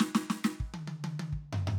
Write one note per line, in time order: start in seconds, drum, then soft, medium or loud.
0.01 snare loud
0.01 hi-hat pedal soft
0.15 snare loud
0.30 snare loud
0.44 snare loud
0.44 hi-hat pedal medium
0.60 kick medium
0.74 high tom loud
0.88 high tom medium
1.05 high tom loud
1.20 high tom loud
1.33 kick soft
1.53 floor tom loud
1.68 floor tom loud